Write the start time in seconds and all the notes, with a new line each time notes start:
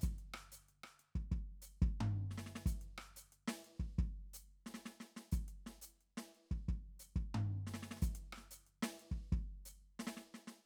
0.01 kick, hi-hat pedal
0.18 closed hi-hat
0.34 cross-stick
0.52 hi-hat pedal
0.68 closed hi-hat
0.83 cross-stick
0.99 closed hi-hat
1.15 kick
1.32 kick
1.62 hi-hat pedal
1.82 kick
2.01 floor tom
2.31 snare
2.38 snare
2.46 snare
2.55 snare
2.66 kick, hi-hat pedal
2.81 closed hi-hat
2.98 cross-stick
3.16 hi-hat pedal
3.32 closed hi-hat
3.48 snare
3.64 closed hi-hat
3.80 kick
3.98 kick
4.33 hi-hat pedal
4.66 snare
4.74 snare
4.86 snare
5.00 snare
5.16 snare
5.32 kick, hi-hat pedal
5.48 closed hi-hat
5.66 snare
5.82 hi-hat pedal
6.01 open hi-hat
6.17 snare
6.35 closed hi-hat
6.51 kick
6.68 kick
6.99 hi-hat pedal
7.16 kick
7.34 floor tom
7.67 snare
7.74 snare
7.83 snare
7.91 snare
7.97 snare
8.02 kick, hi-hat pedal
8.15 closed hi-hat
8.33 cross-stick
8.38 snare
8.51 hi-hat pedal
8.67 closed hi-hat
8.83 snare
8.99 closed hi-hat
9.11 kick
9.32 kick
9.65 hi-hat pedal
9.99 snare
10.07 snare
10.17 snare
10.34 snare
10.47 snare